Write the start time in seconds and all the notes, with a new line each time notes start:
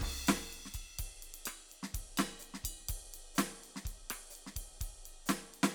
0.01 kick, hi-hat pedal, crash
0.08 kick
0.27 snare, ride bell
0.36 snare
0.53 ride
0.65 snare
0.74 kick, ride bell
0.99 kick, ride
1.05 kick
1.22 ride
1.34 ride
1.45 cross-stick, hi-hat pedal, ride bell
1.68 hi-hat pedal, ride
1.83 snare
1.94 kick, ride
2.00 kick
2.17 snare, ride bell
2.39 hi-hat pedal, ride
2.54 snare
2.64 kick, ride bell
2.80 snare
2.88 kick, hi-hat pedal, ride
3.14 ride
3.35 snare, hi-hat pedal, ride
3.64 ride
3.76 snare
3.85 kick, hi-hat pedal, ride
3.93 kick
4.10 cross-stick, ride
4.30 hi-hat pedal
4.35 ride
4.46 snare
4.56 kick, ride
4.70 snare
4.76 snare, hi-hat pedal
4.81 kick, snare, ride
4.87 kick
4.89 kick
5.06 ride
5.26 snare, hi-hat pedal, ride
5.54 ride
5.63 snare